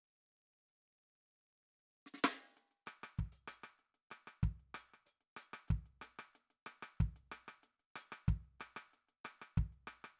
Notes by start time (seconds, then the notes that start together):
2.06 snare
2.14 snare
2.17 snare
2.24 snare
2.57 closed hi-hat
2.71 closed hi-hat
2.86 closed hi-hat, cross-stick
3.03 cross-stick
3.17 kick, closed hi-hat
3.32 closed hi-hat
3.48 closed hi-hat, cross-stick
3.64 cross-stick
3.79 closed hi-hat
3.94 closed hi-hat
4.11 cross-stick, closed hi-hat
4.27 cross-stick
4.43 kick, closed hi-hat
4.60 closed hi-hat
4.74 closed hi-hat, cross-stick
4.94 cross-stick
5.06 hi-hat pedal, open hi-hat
5.21 closed hi-hat
5.37 closed hi-hat, cross-stick
5.53 cross-stick
5.68 kick, closed hi-hat
5.86 closed hi-hat
6.01 cross-stick, closed hi-hat
6.19 cross-stick
6.35 closed hi-hat
6.50 closed hi-hat
6.66 cross-stick, closed hi-hat
6.83 cross-stick
7.00 kick, closed hi-hat
7.16 closed hi-hat
7.32 cross-stick, closed hi-hat
7.48 cross-stick
7.63 closed hi-hat
7.80 closed hi-hat
7.96 closed hi-hat, cross-stick
8.12 cross-stick
8.28 kick, closed hi-hat
8.45 closed hi-hat
8.60 cross-stick, closed hi-hat
8.76 cross-stick
8.93 closed hi-hat
9.09 closed hi-hat
9.25 cross-stick, closed hi-hat
9.42 cross-stick
9.57 kick, closed hi-hat
9.72 closed hi-hat
9.87 cross-stick, closed hi-hat
10.04 cross-stick